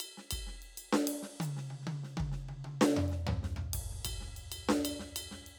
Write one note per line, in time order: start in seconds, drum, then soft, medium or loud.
0.00 ride bell loud
0.17 snare soft
0.31 kick soft
0.31 ride bell loud
0.47 snare soft
0.53 snare soft
0.62 ride soft
0.77 ride bell medium
0.92 snare medium
1.07 ride loud
1.22 snare soft
1.40 hi-hat pedal medium
1.40 high tom loud
1.57 snare soft
1.70 high tom medium
1.82 snare soft
1.87 high tom medium
2.03 snare soft
2.17 kick soft
2.17 high tom loud
2.30 kick soft
2.30 snare soft
2.48 high tom medium
2.64 high tom medium
2.81 snare loud
2.96 mid tom loud
3.08 snare soft
3.08 ride soft
3.27 floor tom medium
3.43 snare soft
3.56 mid tom medium
3.73 kick soft
3.73 ride loud
3.81 kick soft
3.91 snare soft
4.05 kick soft
4.05 ride bell loud
4.12 kick soft
4.20 snare soft
4.26 snare soft
4.36 ride bell soft
4.52 ride bell loud
4.69 snare medium
4.85 ride bell loud
4.99 snare soft
5.16 hi-hat pedal medium
5.16 ride bell loud
5.31 snare soft
5.42 snare soft
5.46 ride soft